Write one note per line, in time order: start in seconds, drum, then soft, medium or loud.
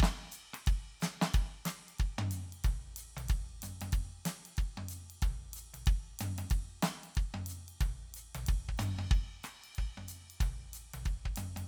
0.01 kick loud
0.01 snare medium
0.01 ride medium
0.20 snare soft
0.32 hi-hat pedal medium
0.32 ride medium
0.54 cross-stick medium
0.54 ride medium
0.67 kick loud
0.67 ride medium
1.01 snare loud
1.01 hi-hat pedal medium
1.01 ride soft
1.22 snare loud
1.35 kick loud
1.35 ride medium
1.66 snare medium
1.66 hi-hat pedal medium
1.66 ride medium
1.89 ride soft
1.99 kick medium
1.99 ride soft
2.19 high tom loud
2.32 hi-hat pedal medium
2.32 ride medium
2.53 ride soft
2.65 kick medium
2.65 floor tom medium
2.65 ride medium
2.97 hi-hat pedal medium
2.97 ride medium
3.18 floor tom medium
3.18 ride medium
3.30 kick medium
3.30 ride medium
3.63 hi-hat pedal medium
3.63 high tom medium
3.63 ride medium
3.82 high tom loud
3.82 ride medium
3.93 kick medium
3.93 ride medium
4.26 snare loud
4.26 hi-hat pedal medium
4.26 ride medium
4.46 ride soft
4.58 kick medium
4.58 ride soft
4.78 high tom medium
4.90 hi-hat pedal medium
4.90 ride medium
5.11 ride soft
5.23 kick medium
5.23 floor tom medium
5.23 ride medium
5.54 hi-hat pedal medium
5.54 ride medium
5.75 floor tom medium
5.75 ride medium
5.87 kick loud
5.87 ride medium
6.20 hi-hat pedal medium
6.20 high tom loud
6.20 ride medium
6.39 high tom medium
6.39 ride medium
6.51 kick medium
6.51 ride medium
6.83 snare medium
6.83 hi-hat pedal medium
6.83 ride medium
7.04 ride soft
7.16 kick medium
7.16 ride soft
7.35 high tom loud
7.47 hi-hat pedal medium
7.47 ride medium
7.69 ride soft
7.82 kick medium
7.82 floor tom medium
7.82 ride medium
8.15 hi-hat pedal medium
8.15 ride medium
8.36 floor tom medium
8.36 ride medium
8.47 kick loud
8.47 ride medium
8.70 kick medium
8.79 hi-hat pedal medium
8.79 high tom loud
8.79 ride medium
9.00 high tom loud
9.12 kick loud
9.12 ride soft
9.44 cross-stick medium
9.44 hi-hat pedal medium
9.44 ride medium
9.65 ride soft
9.76 kick medium
9.76 ride soft
9.98 high tom medium
10.09 hi-hat pedal medium
10.09 ride medium
10.31 ride soft
10.41 kick medium
10.41 floor tom medium
10.41 ride medium
10.74 hi-hat pedal medium
10.74 ride medium
10.95 floor tom medium
10.95 ride medium
11.06 kick medium
11.06 ride soft
11.26 kick medium
11.37 hi-hat pedal medium
11.37 high tom loud
11.37 ride medium
11.57 high tom medium
11.57 ride medium